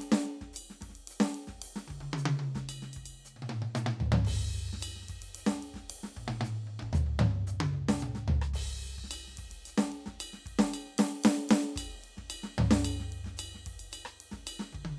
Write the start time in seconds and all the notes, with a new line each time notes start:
0.01 hi-hat pedal, ride
0.12 snare
0.26 ride
0.42 kick, snare
0.47 kick
0.54 hi-hat pedal, ride bell
0.71 snare
0.82 kick, snare, ride
0.90 snare
0.96 ride
1.08 hi-hat pedal, ride
1.21 snare
1.35 ride
1.48 kick, snare
1.62 hi-hat pedal, ride
1.77 snare
1.88 kick, high tom
2.01 high tom
2.14 high tom
2.19 hi-hat pedal
2.26 high tom
2.40 high tom
2.55 kick, snare
2.69 hi-hat pedal, ride bell
2.83 snare
2.94 kick, ride bell
3.06 ride bell
3.26 hi-hat pedal
3.37 mid tom
3.43 mid tom
3.50 mid tom
3.63 mid tom
3.76 hi-hat pedal, mid tom
3.87 mid tom
4.01 floor tom
4.13 floor tom
4.25 kick, hi-hat pedal, crash
4.36 cross-stick
4.69 kick
4.74 snare
4.81 hi-hat pedal, ride bell
4.97 snare
5.03 snare
5.09 kick, ride
5.16 snare
5.23 ride
5.35 hi-hat pedal, ride
5.47 snare
5.63 ride
5.75 kick, snare
5.90 hi-hat pedal, ride
6.04 snare
6.17 kick, mid tom
6.29 mid tom
6.42 hi-hat pedal, mid tom
6.68 mid tom
6.80 kick, mid tom
6.94 floor tom, hi-hat pedal
7.07 mid tom
7.20 floor tom
7.32 mid tom
7.48 hi-hat pedal, mid tom
7.61 high tom
7.74 mid tom
7.89 snare
8.00 hi-hat pedal, mid tom
8.16 snare
8.29 floor tom
8.42 cross-stick
8.54 kick, hi-hat pedal, crash
8.68 kick
8.99 kick
9.05 snare
9.12 hi-hat pedal, ride bell
9.28 snare
9.33 snare
9.38 kick, ride
9.45 kick
9.50 snare, ride
9.66 hi-hat pedal, ride bell
9.78 snare
9.93 ride
10.07 kick, snare
10.20 hi-hat pedal, ride bell
10.34 snare
10.46 kick, ride
10.59 snare
10.74 hi-hat pedal, ride bell
10.99 snare, ride
11.25 snare, hi-hat pedal, ride
11.49 snare, hi-hat pedal, ride
11.77 kick, snare, hi-hat pedal, ride bell
11.89 kick
12.01 hi-hat pedal, ride
12.18 kick, snare
12.30 hi-hat pedal, ride bell
12.44 snare
12.59 floor tom
12.72 snare
12.85 hi-hat pedal, ride bell
13.01 snare
13.13 ride
13.25 kick, snare
13.33 snare
13.38 hi-hat pedal, ride bell
13.55 snare
13.67 kick, ride
13.73 kick
13.80 ride bell
13.93 hi-hat pedal, ride bell
14.06 cross-stick
14.21 ride
14.32 kick, snare
14.39 kick
14.47 hi-hat pedal, ride bell
14.60 snare
14.73 kick, high tom
14.82 kick
14.86 high tom